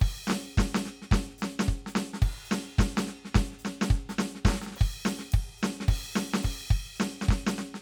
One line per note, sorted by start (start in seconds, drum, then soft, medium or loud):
0.01 kick loud
0.01 crash loud
0.24 snare loud
0.24 hi-hat pedal medium
0.30 snare loud
0.58 kick loud
0.58 snare loud
0.75 snare loud
0.75 hi-hat pedal medium
0.86 snare medium
1.02 snare soft
1.12 kick loud
1.12 snare loud
1.30 snare soft
1.39 hi-hat pedal medium
1.43 snare loud
1.60 snare loud
1.69 kick loud
1.87 snare medium
1.87 hi-hat pedal medium
1.96 snare loud
2.14 snare medium
2.23 kick loud
2.23 crash medium
2.46 hi-hat pedal medium
2.52 snare loud
2.79 kick loud
2.79 snare loud
2.98 snare loud
2.98 hi-hat pedal medium
3.08 snare medium
3.25 snare medium
3.35 kick loud
3.35 snare loud
3.53 snare soft
3.59 hi-hat pedal medium
3.65 snare loud
3.82 snare loud
3.91 kick loud
3.95 snare soft
4.10 snare medium
4.10 hi-hat pedal medium
4.19 snare loud
4.36 snare soft
4.45 kick loud
4.45 snare loud
4.53 snare medium
4.62 snare medium
4.62 hi-hat pedal medium
4.67 snare medium
4.72 snare medium
4.76 crash loud
4.81 kick loud
5.06 snare loud
5.06 hi-hat pedal medium
5.19 snare medium
5.31 kick loud
5.31 snare soft
5.31 crash medium
5.59 hi-hat pedal soft
5.63 snare loud
5.81 snare medium
5.89 kick loud
5.89 crash loud
6.10 hi-hat pedal soft
6.16 snare loud
6.34 snare loud
6.44 kick medium
6.44 crash loud
6.71 kick loud
6.71 ride soft
6.96 hi-hat pedal medium
7.00 snare loud
7.22 snare medium
7.29 kick loud
7.29 snare loud
7.47 snare loud
7.47 hi-hat pedal medium
7.59 snare medium
7.75 snare medium